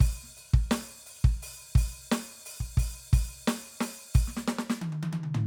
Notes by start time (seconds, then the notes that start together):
0.01 open hi-hat, kick
0.23 snare
0.27 snare
0.37 open hi-hat
0.54 kick
0.71 open hi-hat, snare
1.06 open hi-hat
1.25 kick
1.43 open hi-hat
1.76 open hi-hat, kick
2.12 open hi-hat, snare
2.46 open hi-hat
2.61 kick
2.78 open hi-hat, kick
3.13 open hi-hat, kick
3.48 open hi-hat, snare
3.81 open hi-hat, snare
4.14 open hi-hat, kick
4.28 snare
4.37 snare
4.48 snare
4.59 snare
4.70 snare
4.82 high tom
4.93 high tom
5.03 high tom
5.24 mid tom
5.35 floor tom